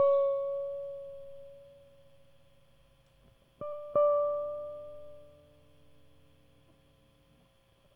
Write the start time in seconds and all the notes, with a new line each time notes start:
0.00 C#5
3.62 D5
3.96 D5